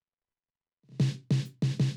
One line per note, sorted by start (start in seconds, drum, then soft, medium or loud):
0.84 snare soft
0.89 snare soft
0.92 snare soft
0.94 snare soft
1.00 snare loud
1.31 snare loud
1.45 hi-hat pedal medium
1.62 snare loud
1.80 snare loud